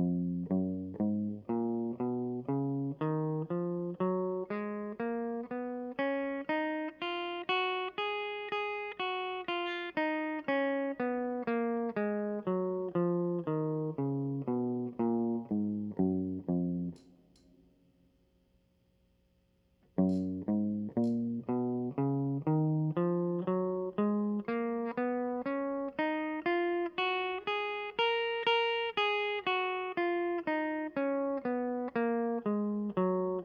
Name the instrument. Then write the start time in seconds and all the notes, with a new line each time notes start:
electric guitar
0.00 F2
0.53 F#2
1.02 G#2
1.51 A#2
2.02 B2
2.50 C#3
3.03 D#3
3.52 F3
4.02 F#3
4.52 G#3
5.01 A#3
5.52 B3
6.00 C#4
6.50 D#4
7.02 F4
7.50 F#4
7.99 G#4
8.53 G#4
9.00 F#4
9.49 F4
9.98 D#4
10.50 C#4
11.01 B3
11.48 A#3
11.98 G#3
12.48 F#3
12.97 F3
13.49 D#3
14.00 C#3
14.50 B2
15.02 A#2
15.53 G#2
16.01 F#2
16.51 F2
20.01 F#2
20.50 G#2
20.99 A#2
21.51 B2
22.00 C#3
22.48 D#3
22.98 F3
23.49 F#3
23.99 G#3
24.49 A#3
24.99 B3
25.47 C#4
26.00 D#4
26.47 F4
26.99 F#4
27.48 G#4
28.00 A#4
28.47 A#4
28.98 G#4
29.47 F#4
29.98 F4
30.48 D#4
30.97 C#4
31.46 B3
31.97 A#3
32.47 G#3
32.98 F#3